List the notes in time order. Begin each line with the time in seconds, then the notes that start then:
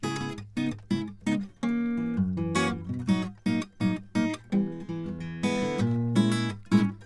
0.01 C#3 G#3 A#3 E4 G#4
0.21 G#3 A#3 E4
0.57 C#3 G#3 B3 D#4
0.91 C#3 G#3 A#3 E4
1.27 C#3 G#3 B3 D#4
1.63 E3 A#3 C#4
1.98 E3
2.18 F#2
2.37 E3
2.55 A#3 C#4 F#4
2.70 E3
2.90 B2
3.09 B2 F#3 D#4 F#4
3.46 A#2 F#3 A#3 D#4
3.81 A#2 F#3 A#3 D#4
4.16 A2 F#3 A#3 D#4
4.52 E3 C4
4.62 G3
4.89 E3
5.07 E2
5.21 E3
5.44 B3 E4
5.54 B3
5.63 D3
5.81 A#2
6.16 G#3 C#4 E4
6.32 G#3 E4
6.72 A#2 G#3 C#4 E4